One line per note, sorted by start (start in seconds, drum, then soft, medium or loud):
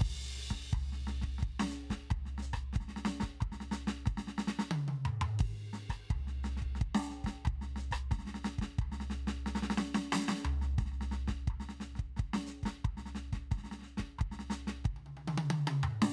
0.01 kick medium
0.01 ride loud
0.36 snare soft
0.51 kick soft
0.51 snare soft
0.74 kick soft
0.74 floor tom loud
0.93 snare soft
1.08 snare soft
1.08 hi-hat pedal soft
1.22 kick soft
1.22 snare soft
1.39 snare soft
1.43 kick soft
1.60 snare loud
1.72 snare soft
1.72 hi-hat pedal medium
1.91 kick soft
1.91 snare medium
2.11 kick soft
2.11 floor tom medium
2.26 snare soft
2.39 snare soft
2.43 hi-hat pedal medium
2.54 kick soft
2.54 cross-stick medium
2.74 kick soft
2.74 snare soft
2.81 snare soft
2.87 snare soft
2.89 snare soft
3.06 snare medium
3.06 hi-hat pedal medium
3.21 kick soft
3.21 snare medium
3.41 kick soft
3.41 floor tom medium
3.53 snare soft
3.61 snare soft
3.72 snare medium
3.72 hi-hat pedal medium
3.88 snare medium
4.06 kick soft
4.06 snare soft
4.16 kick soft
4.16 snare medium
4.39 snare medium
4.48 snare medium
4.60 snare medium
4.72 high tom loud
4.89 high tom medium
5.06 mid tom medium
5.22 mid tom medium
5.40 kick medium
5.40 ride loud
5.74 snare soft
5.74 hi-hat pedal soft
5.90 kick soft
5.90 cross-stick medium
6.11 kick soft
6.11 floor tom loud
6.28 snare soft
6.44 snare soft
6.44 hi-hat pedal soft
6.57 snare soft
6.62 kick soft
6.76 snare soft
6.82 kick soft
6.96 snare loud
7.11 snare soft
7.11 hi-hat pedal soft
7.25 kick soft
7.25 snare medium
7.46 kick soft
7.46 floor tom medium
7.62 snare soft
7.77 snare soft
7.77 hi-hat pedal medium
7.92 kick soft
7.92 cross-stick medium
8.12 kick soft
8.12 snare medium
8.20 snare soft
8.26 snare soft
8.28 snare medium
8.35 snare soft
8.45 snare medium
8.45 hi-hat pedal soft
8.59 kick soft
8.59 snare medium
8.79 kick soft
8.79 floor tom medium
8.93 snare soft
9.01 snare soft
9.11 snare soft
9.11 hi-hat pedal soft
9.28 snare medium
9.47 snare soft
9.56 snare medium
9.63 snare medium
9.71 snare medium
9.78 snare medium
9.95 snare medium
10.13 snare loud
10.29 snare loud
10.46 floor tom loud
10.62 snare soft
10.79 kick soft
10.79 snare soft
10.86 snare soft
10.93 snare soft
11.02 snare soft
11.12 snare soft
11.28 kick soft
11.28 snare medium
11.48 kick soft
11.48 floor tom medium
11.61 snare soft
11.70 snare soft
11.81 snare soft
11.81 hi-hat pedal soft
11.96 kick soft
11.96 snare soft
12.17 kick soft
12.17 snare soft
12.34 snare medium
12.47 snare soft
12.47 hi-hat pedal medium
12.64 kick soft
12.64 snare medium
12.85 kick soft
12.85 floor tom medium
12.98 snare soft
13.06 snare soft
13.16 snare soft
13.16 hi-hat pedal soft
13.33 kick soft
13.33 snare soft
13.52 kick soft
13.52 snare soft
13.58 snare soft
13.63 snare soft
13.72 snare soft
13.79 snare soft
13.82 snare soft
13.87 hi-hat pedal soft
13.98 kick soft
13.98 snare medium
14.19 kick soft
14.19 floor tom medium
14.32 snare soft
14.40 snare soft
14.51 snare medium
14.51 hi-hat pedal medium
14.68 snare medium
14.85 kick soft
14.85 high tom soft
14.97 high tom medium
15.07 high tom medium
15.18 high tom medium
15.28 high tom medium
15.38 open hi-hat soft
15.38 high tom loud
15.51 high tom loud
15.68 high tom loud
15.84 mid tom medium
16.03 snare loud